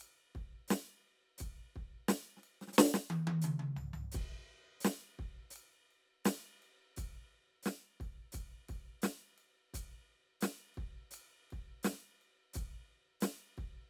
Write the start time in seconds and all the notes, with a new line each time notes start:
0.01 ride
0.35 kick, ride
0.68 snare, hi-hat pedal, ride
1.38 kick, hi-hat pedal, ride
1.75 kick, ride
2.08 snare, hi-hat pedal, ride
2.37 snare
2.43 ride
2.61 snare
2.68 snare
2.73 snare, hi-hat pedal
2.78 snare
2.94 snare
3.10 high tom
3.27 high tom
3.42 hi-hat pedal, mid tom
3.59 mid tom
3.77 floor tom
3.93 floor tom
4.12 kick, hi-hat pedal, ride
4.81 hi-hat pedal
4.85 snare, ride
5.19 kick, ride
5.51 hi-hat pedal
5.56 ride
5.91 ride
6.25 snare, hi-hat pedal, ride
6.62 ride
6.97 kick, hi-hat pedal, ride
7.31 ride
7.63 snare, hi-hat pedal
7.67 ride
8.00 kick, ride
8.32 kick, hi-hat pedal, ride
8.69 kick, ride
9.02 snare, hi-hat pedal, ride
9.38 ride
9.74 kick, hi-hat pedal, ride
10.41 snare, hi-hat pedal, ride
10.75 kick, ride
11.11 hi-hat pedal, ride
11.51 kick, ride
11.83 snare, hi-hat pedal, ride
11.93 snare
12.21 ride
12.54 kick, hi-hat pedal, ride
12.87 ride
13.21 snare, hi-hat pedal, ride
13.57 kick, ride